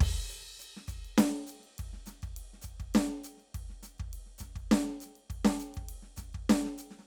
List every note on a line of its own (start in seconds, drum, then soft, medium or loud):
0.01 kick loud
0.01 crash loud
0.30 hi-hat pedal medium
0.60 hi-hat pedal medium
0.60 ride medium
0.77 snare soft
0.88 kick medium
0.88 hi-hat pedal medium
0.88 ride soft
1.05 ride soft
1.18 snare loud
1.18 ride loud
1.47 hi-hat pedal medium
1.47 ride soft
1.60 snare soft
1.60 ride soft
1.79 kick medium
1.79 ride medium
1.94 snare soft
2.06 snare soft
2.06 hi-hat pedal medium
2.06 ride soft
2.23 kick medium
2.23 ride soft
2.37 ride medium
2.54 snare soft
2.62 kick soft
2.62 hi-hat pedal medium
2.62 ride soft
2.80 kick soft
2.80 ride soft
2.95 snare loud
2.95 ride medium
3.24 hi-hat pedal medium
3.24 ride soft
3.37 snare soft
3.37 ride soft
3.55 kick medium
3.55 ride medium
3.70 snare soft
3.83 snare soft
3.83 hi-hat pedal medium
3.83 ride soft
3.99 kick medium
3.99 ride soft
4.14 ride medium
4.26 snare soft
4.39 kick soft
4.39 snare soft
4.39 hi-hat pedal medium
4.39 ride soft
4.56 kick medium
4.56 ride soft
4.72 snare loud
4.72 ride soft
4.89 snare soft
5.01 hi-hat pedal medium
5.01 ride soft
5.06 snare soft
5.16 ride soft
5.30 kick medium
5.30 ride soft
5.45 snare loud
5.60 hi-hat pedal medium
5.60 ride soft
5.75 kick medium
5.75 ride soft
5.89 ride medium
6.03 snare soft
6.17 kick soft
6.17 snare soft
6.17 hi-hat pedal medium
6.17 ride soft
6.34 kick medium
6.34 ride soft
6.50 snare loud
6.50 ride medium
6.66 snare soft
6.78 hi-hat pedal medium
6.78 ride soft
6.91 snare soft
6.99 snare soft